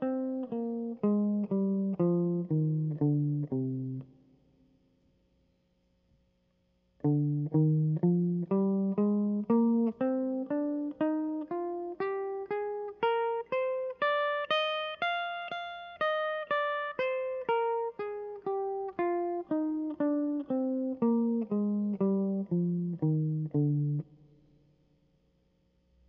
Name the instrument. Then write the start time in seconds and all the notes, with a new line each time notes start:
electric guitar
0.03 C4
0.53 A#3
1.04 G#3
1.52 G3
2.01 F3
2.52 D#3
2.94 D3
3.02 D3
3.53 C3
7.06 D3
7.55 D#3
8.04 F3
8.52 G3
8.99 G#3
9.51 A#3
10.01 C4
10.51 D4
11.01 D#4
11.51 F4
12.01 G4
12.51 G#4
13.03 A#4
13.53 C5
14.02 D5
14.51 D#5
15.02 F5
15.52 F5
16.01 D#5
16.51 D5
16.99 C5
17.49 A#4
18.00 G#4
18.47 G4
18.99 F4
19.52 D#4
20.01 D4
20.51 C4
21.03 A#3
21.52 G#3
22.01 G3
22.52 F3
23.04 D#3
23.56 D3